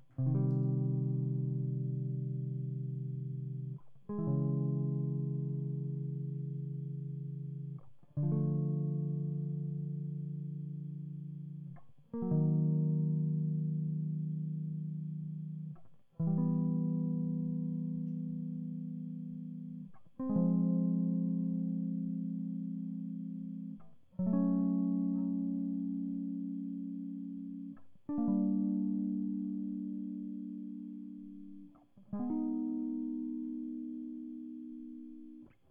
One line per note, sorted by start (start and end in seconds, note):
0.20 3.78 C3
0.27 3.80 D#3
0.35 3.80 G3
4.10 7.80 G#3
4.19 7.82 E3
4.28 7.80 C#3
8.18 11.76 D3
8.24 11.81 F3
8.32 11.04 A3
12.14 15.71 A#3
12.23 15.75 F#3
12.32 15.77 D#3
16.21 19.88 E3
16.28 19.90 G3
16.38 19.89 B3
20.20 23.78 C4
20.30 23.79 G#3
20.36 23.76 F3
24.20 27.77 F#3
24.27 27.81 A3
24.33 27.75 C#4
28.09 31.84 D4
28.18 31.58 A#3
28.29 31.68 G3
32.14 33.74 G#3
32.20 35.49 B3
32.30 35.50 D#4